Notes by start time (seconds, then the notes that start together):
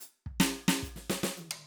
0.00 closed hi-hat
0.26 kick
0.40 closed hi-hat, snare
0.68 snare
0.82 closed hi-hat, kick
0.96 snare
1.10 snare
1.23 snare
1.37 high tom
1.51 high tom